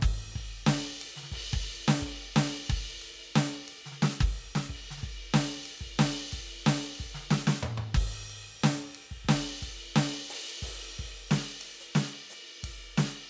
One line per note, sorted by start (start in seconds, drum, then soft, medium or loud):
0.02 kick loud
0.02 crash medium
0.31 ride medium
0.35 kick medium
0.66 snare loud
0.66 ride loud
1.01 ride loud
1.16 snare soft
1.23 snare soft
1.32 kick medium
1.32 ride loud
1.53 kick loud
1.53 ride medium
1.88 snare loud
2.02 kick medium
2.02 ride medium
2.36 snare loud
2.36 ride loud
2.70 kick loud
2.70 ride loud
3.02 ride medium
3.35 snare loud
3.35 ride medium
3.68 ride medium
3.86 snare medium
3.92 snare soft
4.02 snare loud
4.20 kick loud
4.20 crash medium
4.55 snare loud
4.69 kick medium
4.69 ride medium
4.91 snare medium
4.98 snare soft
5.02 kick medium
5.02 ride medium
5.34 snare loud
5.34 ride loud
5.56 snare soft
5.66 ride medium
5.81 kick medium
5.99 snare loud
5.99 ride loud
6.32 kick medium
6.32 ride medium
6.66 snare loud
6.66 ride loud
6.99 kick medium
6.99 ride medium
7.14 snare medium
7.20 snare soft
7.47 snare loud
7.63 high tom loud
7.78 high tom loud
7.94 kick loud
7.94 crash medium
8.30 ride medium
8.63 snare loud
8.63 ride loud
8.95 ride medium
9.11 kick medium
9.24 kick soft
9.29 snare loud
9.29 ride loud
9.62 kick medium
9.62 ride medium
9.96 snare loud
9.96 ride loud
10.29 open hi-hat loud
10.29 ride loud
10.62 kick medium
10.62 hi-hat pedal soft
10.62 crash medium
10.97 kick medium
10.97 ride soft
11.31 snare loud
11.31 ride loud
11.61 ride loud
11.80 hi-hat pedal medium
11.95 snare loud
11.95 ride medium
12.30 hi-hat pedal medium
12.30 ride medium
12.63 kick medium
12.63 ride loud
12.97 snare loud
12.97 ride medium